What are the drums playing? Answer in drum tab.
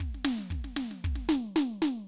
SD |ooooooooooo-o-o-|
BD |o---o---o-------|